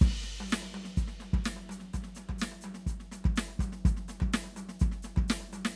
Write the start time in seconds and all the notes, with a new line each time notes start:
0.01 kick, hi-hat pedal, crash
0.24 snare
0.41 high tom
0.49 snare, hi-hat pedal
0.63 high tom
0.75 high tom
0.85 snare
0.97 kick, hi-hat pedal, high tom
1.08 snare
1.20 snare, high tom
1.34 kick, high tom
1.45 snare, hi-hat pedal
1.57 high tom
1.70 hi-hat pedal, high tom
1.80 snare
1.85 snare
1.94 kick, hi-hat pedal, high tom
2.04 snare
2.16 snare, hi-hat pedal, high tom
2.29 kick, high tom
2.39 snare, hi-hat pedal
2.52 high tom
2.62 hi-hat pedal, high tom
2.75 snare
2.87 kick, hi-hat pedal, high tom
3.00 snare
3.12 snare, hi-hat pedal, high tom
3.25 kick, high tom
3.36 snare, hi-hat pedal
3.49 high tom
3.60 kick, hi-hat pedal, high tom
3.73 snare
3.86 kick, hi-hat pedal, high tom
3.97 snare
4.09 snare, hi-hat pedal, high tom
4.21 kick, high tom
4.33 snare, hi-hat pedal
4.45 high tom
4.57 hi-hat pedal, high tom
4.69 snare
4.80 kick, hi-hat pedal, high tom
4.92 snare
5.03 snare, hi-hat pedal, high tom
5.17 kick, high tom
5.29 snare, hi-hat pedal
5.41 high tom
5.53 hi-hat pedal, high tom
5.66 snare